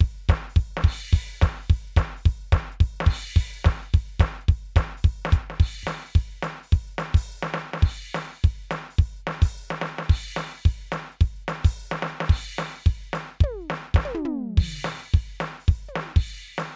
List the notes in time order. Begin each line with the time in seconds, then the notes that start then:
0.01 open hi-hat, kick
0.26 closed hi-hat, kick, snare, hi-hat pedal
0.50 open hi-hat
0.56 open hi-hat, kick
0.76 snare, hi-hat pedal
0.84 kick, crash
1.13 open hi-hat, kick
1.39 kick, snare, hi-hat pedal
1.43 closed hi-hat
1.62 open hi-hat
1.70 open hi-hat, kick
1.95 closed hi-hat, kick, snare, hi-hat pedal
2.17 open hi-hat
2.26 open hi-hat, kick
2.49 closed hi-hat, kick, snare, hi-hat pedal
2.72 closed hi-hat
2.80 open hi-hat, kick
3.00 snare, hi-hat pedal
3.07 kick, crash
3.36 open hi-hat, kick
3.62 closed hi-hat, kick, snare, hi-hat pedal
3.83 open hi-hat
3.93 open hi-hat, kick
4.18 closed hi-hat, kick, snare, hi-hat pedal
4.41 closed hi-hat
4.49 open hi-hat, kick
4.72 kick, hi-hat pedal
4.77 closed hi-hat, snare
4.97 open hi-hat
5.04 open hi-hat, kick
5.25 snare, hi-hat pedal
5.33 closed hi-hat, kick
5.50 snare
5.60 kick, crash
5.83 kick, hi-hat pedal
5.87 closed hi-hat, snare
6.06 open hi-hat
6.15 open hi-hat, kick
6.39 snare, hi-hat pedal
6.44 closed hi-hat
6.63 open hi-hat
6.72 open hi-hat, kick
6.93 hi-hat pedal
6.98 closed hi-hat, snare
7.14 open hi-hat, kick
7.43 snare, hi-hat pedal
7.54 snare
7.74 snare
7.83 kick, crash
8.12 closed hi-hat, snare, hi-hat pedal
8.34 open hi-hat
8.43 open hi-hat, kick
8.68 closed hi-hat, snare, hi-hat pedal
8.90 open hi-hat
8.99 open hi-hat, kick
9.20 hi-hat pedal
9.27 snare
9.42 open hi-hat, kick
9.71 snare, hi-hat pedal
9.82 snare
9.99 snare
10.09 kick, crash
10.33 hi-hat pedal
10.37 closed hi-hat, snare
10.56 open hi-hat
10.65 open hi-hat, kick
10.89 closed hi-hat, snare, hi-hat pedal
11.12 closed hi-hat
11.21 open hi-hat, kick
11.42 hi-hat pedal
11.48 closed hi-hat, snare
11.65 open hi-hat, kick
11.92 snare, hi-hat pedal
12.03 snare
12.21 snare
12.30 kick, crash
12.55 snare, hi-hat pedal
12.60 closed hi-hat
12.79 open hi-hat
12.86 open hi-hat, kick
13.07 hi-hat pedal
13.13 closed hi-hat, snare
13.41 kick, high tom
13.61 hi-hat pedal
13.70 snare
13.94 kick, snare
14.05 high tom
14.14 floor tom, hi-hat pedal
14.25 floor tom
14.58 kick, crash
14.79 hi-hat pedal
14.85 closed hi-hat, snare
15.04 open hi-hat
15.14 kick, snare
15.35 hi-hat pedal
15.40 closed hi-hat, snare
15.60 open hi-hat
15.68 open hi-hat, kick
15.88 hi-hat pedal, high tom
15.96 snare
16.16 kick, crash
16.54 hi-hat pedal
16.58 closed hi-hat, snare